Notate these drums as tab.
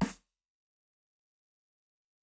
HH |x-------|
SD |o-------|